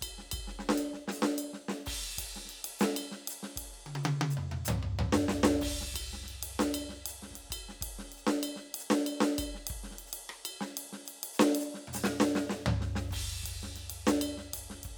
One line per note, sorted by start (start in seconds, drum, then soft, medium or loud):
0.01 kick soft
0.01 ride bell loud
0.18 snare soft
0.31 kick soft
0.31 ride bell loud
0.39 kick soft
0.47 snare soft
0.59 snare medium
0.69 snare loud
0.74 hi-hat pedal soft
0.74 ride bell medium
0.93 snare soft
1.08 snare medium
1.08 hi-hat pedal medium
1.22 snare medium
1.38 hi-hat pedal soft
1.38 ride bell loud
1.53 snare soft
1.68 snare medium
1.86 kick soft
1.86 crash loud
2.09 snare soft
2.18 kick soft
2.18 ride loud
2.36 snare soft
2.45 snare soft
2.49 ride medium
2.64 ride loud
2.79 snare loud
2.79 hi-hat pedal medium
2.96 ride bell loud
3.11 snare medium
3.27 hi-hat pedal medium
3.27 ride loud
3.43 snare medium
3.56 kick soft
3.56 ride loud
3.70 hi-hat pedal soft
3.75 cross-stick soft
3.86 high tom medium
3.95 high tom medium
4.03 hi-hat pedal soft
4.03 high tom loud
4.21 high tom loud
4.30 hi-hat pedal medium
4.37 mid tom medium
4.51 mid tom medium
4.65 hi-hat pedal loud
4.65 floor tom loud
4.83 floor tom medium
4.99 floor tom loud
5.12 snare loud
5.28 snare loud
5.43 snare loud
5.61 kick soft
5.61 crash loud
5.81 snare soft
5.94 kick soft
5.94 ride bell loud
6.13 snare soft
6.23 snare soft
6.28 ride medium
6.42 ride loud
6.59 snare medium
6.59 hi-hat pedal medium
6.74 ride bell loud
6.89 snare soft
7.06 hi-hat pedal medium
7.06 ride loud
7.22 snare soft
7.30 kick soft
7.30 snare soft
7.35 ride medium
7.50 kick soft
7.50 hi-hat pedal soft
7.50 ride bell loud
7.68 snare soft
7.81 kick soft
7.81 ride loud
7.98 snare soft
8.12 ride medium
8.17 hi-hat pedal soft
8.26 snare loud
8.43 ride bell loud
8.56 snare soft
8.74 ride loud
8.79 hi-hat pedal medium
8.90 snare loud
9.06 ride bell loud
9.20 snare loud
9.38 kick soft
9.38 hi-hat pedal medium
9.38 ride bell loud
9.44 kick soft
9.54 snare soft
9.67 kick soft
9.67 ride loud
9.83 snare soft
9.91 snare soft
9.95 snare soft
9.95 ride medium
10.07 hi-hat pedal soft
10.13 ride loud
10.29 cross-stick medium
10.45 ride bell loud
10.61 snare medium
10.77 hi-hat pedal medium
10.77 ride loud
10.92 snare soft
11.05 hi-hat pedal soft
11.05 ride medium
11.23 ride loud
11.34 hi-hat pedal medium
11.39 snare loud
11.55 ride loud
11.60 hi-hat pedal medium
11.74 snare soft
11.87 kick soft
11.87 mid tom medium
11.93 snare medium
11.93 hi-hat pedal loud
12.04 snare loud
12.20 snare loud
12.35 snare medium
12.49 snare medium
12.66 floor tom loud
12.81 snare medium
12.95 snare medium
13.08 kick soft
13.08 hi-hat pedal soft
13.08 crash loud
13.32 cross-stick soft
13.43 kick soft
13.43 ride loud
13.63 snare soft
13.75 snare soft
13.75 ride medium
13.90 ride loud
14.07 snare loud
14.07 hi-hat pedal medium
14.21 ride bell loud
14.37 snare soft
14.53 kick soft
14.53 hi-hat pedal medium
14.53 ride loud
14.70 snare soft
14.83 kick soft
14.83 ride medium